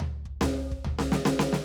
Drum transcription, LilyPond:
\new DrumStaff \drummode { \time 4/4 \tempo 4 = 144 \tuplet 3/2 { tomfh8 r8 bd8 <sn tomfh>8 r8 bd8 tomfh8 sn8 sn8 sn8 sn8 sn8 } | }